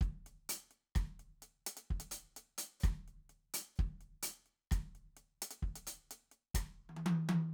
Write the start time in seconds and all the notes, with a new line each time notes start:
0.01 kick, closed hi-hat
0.26 closed hi-hat
0.49 closed hi-hat
0.71 closed hi-hat
0.95 kick, cross-stick, closed hi-hat
1.20 closed hi-hat
1.42 closed hi-hat
1.67 closed hi-hat
1.77 closed hi-hat
1.90 kick
2.00 closed hi-hat
2.11 closed hi-hat
2.37 closed hi-hat
2.58 open hi-hat
2.80 kick, cross-stick, hi-hat pedal
2.84 closed hi-hat
3.08 closed hi-hat
3.29 closed hi-hat
3.54 closed hi-hat
3.76 kick, closed hi-hat, hi-hat pedal
4.01 closed hi-hat
4.23 closed hi-hat
4.46 closed hi-hat
4.71 kick, cross-stick, closed hi-hat
4.76 cross-stick
4.95 closed hi-hat
5.17 closed hi-hat
5.42 closed hi-hat
5.51 closed hi-hat
5.62 kick
5.76 closed hi-hat
5.87 closed hi-hat
6.11 closed hi-hat
6.32 closed hi-hat
6.54 kick, cross-stick, closed hi-hat
6.89 high tom
6.97 high tom
7.06 high tom
7.29 high tom